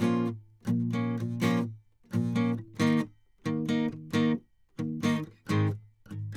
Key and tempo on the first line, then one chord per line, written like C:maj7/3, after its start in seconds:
F minor, 88 BPM
0.00 A#:min
2.73 D#:(1,5)
5.46 G#:maj